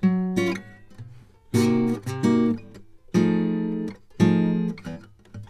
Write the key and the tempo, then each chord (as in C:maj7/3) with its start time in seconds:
A# minor, 110 BPM
0.00 F#:maj7
1.16 C:hdim7(11)
3.34 F:7(#9,*5)